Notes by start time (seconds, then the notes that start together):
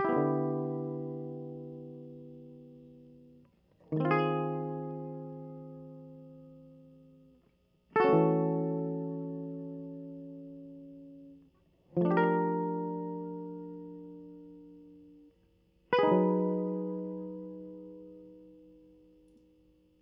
0.00 G4
0.05 E4
0.09 B3
0.18 D3
3.93 D#3
4.01 C4
4.05 F4
4.11 G#4
7.96 A4
8.00 F#4
8.05 C#4
8.10 E3 A3
11.98 F3
12.03 A3 D4
12.11 G4
12.17 A#4
15.93 B4
15.99 G#4
16.04 D#4
16.08 F#3 A3